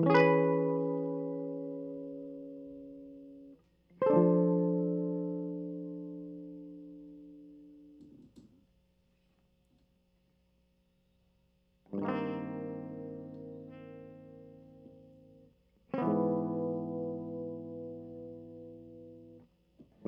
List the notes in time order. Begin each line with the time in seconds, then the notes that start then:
0.00 E3
0.07 C#4 G#4
0.15 B4
4.02 C5
4.07 D4 A4
4.15 F3 A3
11.95 G2
12.00 A#2 D#3
12.06 A#3 C4
15.94 C4
15.99 B3
16.03 E3
16.07 G#2 B2